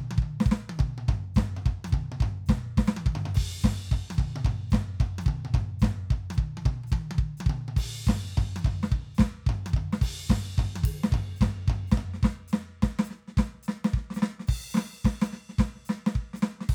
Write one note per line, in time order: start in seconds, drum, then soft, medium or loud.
0.11 high tom loud
0.18 kick loud
0.23 mid tom medium
0.41 snare loud
0.45 kick loud
0.45 hi-hat pedal soft
0.52 snare loud
0.70 high tom loud
0.79 kick loud
0.79 mid tom loud
0.98 mid tom medium
1.09 kick loud
1.09 floor tom loud
1.35 kick loud
1.35 snare loud
1.35 floor tom loud
1.35 hi-hat pedal soft
1.57 floor tom medium
1.66 kick loud
1.66 floor tom medium
1.85 hi-hat pedal soft
1.85 high tom loud
1.93 kick loud
1.93 mid tom loud
2.12 mid tom loud
2.21 kick loud
2.21 floor tom loud
2.46 kick loud
2.46 snare loud
2.46 hi-hat pedal soft
2.51 mid tom loud
2.78 kick loud
2.78 snare loud
2.85 snare loud
2.85 hi-hat pedal soft
2.97 high tom loud
3.06 kick loud
3.16 floor tom loud
3.26 floor tom loud
3.35 kick loud
3.35 ride loud
3.61 kick loud
3.61 snare loud
3.61 hi-hat pedal soft
3.66 floor tom loud
3.92 kick loud
3.92 floor tom loud
4.11 hi-hat pedal soft
4.11 high tom loud
4.18 kick loud
4.18 mid tom loud
4.36 mid tom loud
4.45 kick loud
4.45 floor tom loud
4.71 kick loud
4.71 snare loud
4.71 hi-hat pedal soft
4.75 floor tom loud
5.00 kick loud
5.00 floor tom loud
5.19 hi-hat pedal soft
5.19 high tom loud
5.26 kick loud
5.26 mid tom loud
5.45 mid tom loud
5.54 kick loud
5.54 floor tom loud
5.80 kick loud
5.80 snare loud
5.80 hi-hat pedal soft
5.85 floor tom loud
6.11 kick loud
6.11 floor tom medium
6.31 hi-hat pedal soft
6.31 high tom loud
6.38 kick loud
6.38 mid tom medium
6.58 high tom loud
6.66 kick loud
6.66 mid tom loud
6.84 hi-hat pedal soft
6.84 high tom medium
6.92 kick loud
6.92 high tom loud
7.11 high tom loud
7.19 kick loud
7.38 hi-hat pedal soft
7.38 high tom loud
7.46 kick loud
7.46 mid tom loud
7.68 mid tom medium
7.77 kick loud
7.77 ride loud
8.05 kick loud
8.05 snare loud
8.05 hi-hat pedal soft
8.10 floor tom loud
8.38 kick loud
8.38 floor tom loud
8.56 hi-hat pedal soft
8.56 high tom loud
8.65 kick loud
8.65 floor tom loud
8.83 snare loud
8.92 kick loud
8.92 mid tom medium
9.15 snare loud
9.15 hi-hat pedal soft
9.20 kick loud
9.20 snare loud
9.47 kick loud
9.47 floor tom loud
9.66 hi-hat pedal soft
9.66 high tom loud
9.74 kick loud
9.74 floor tom medium
9.93 snare loud
10.02 kick loud
10.02 ride loud
10.25 hi-hat pedal soft
10.30 kick loud
10.30 snare loud
10.30 floor tom loud
10.58 kick loud
10.58 floor tom loud
10.76 hi-hat pedal soft
10.76 high tom loud
10.84 kick loud
10.84 ride loud
11.04 snare loud
11.13 kick loud
11.13 floor tom loud
11.37 hi-hat pedal soft
11.41 kick loud
11.41 snare loud
11.41 floor tom loud
11.68 kick loud
11.68 floor tom loud
11.88 hi-hat pedal soft
11.92 kick loud
11.92 snare loud
11.98 floor tom loud
12.14 snare medium
12.23 kick loud
12.23 snare loud
12.48 hi-hat pedal medium
12.53 snare loud
12.83 kick loud
12.83 snare loud
12.99 snare loud
13.04 hi-hat pedal medium
13.11 snare medium
13.28 snare soft
13.38 kick loud
13.38 snare loud
13.58 snare soft
13.63 hi-hat pedal medium
13.69 snare loud
13.85 snare loud
13.94 kick loud
13.94 snare soft
14.11 snare medium
14.11 hi-hat pedal medium
14.17 snare medium
14.23 snare loud
14.40 snare medium
14.48 kick loud
14.48 crash loud
14.71 snare loud
14.71 hi-hat pedal medium
14.77 snare loud
15.05 kick loud
15.05 snare loud
15.22 snare loud
15.22 hi-hat pedal medium
15.33 snare medium
15.49 snare soft
15.59 kick loud
15.59 snare loud
15.77 snare soft
15.86 hi-hat pedal medium
15.90 snare loud
16.07 snare loud
16.16 kick loud
16.34 snare medium
16.34 hi-hat pedal medium
16.43 snare loud
16.61 snare medium
16.69 kick loud
16.69 crash medium